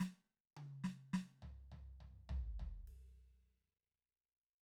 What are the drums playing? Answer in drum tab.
CC |--------|--x-----|
HH |p-------|--------|
SD |o--go---|--------|
T1 |--o-----|--------|
FT |-----ogg|og------|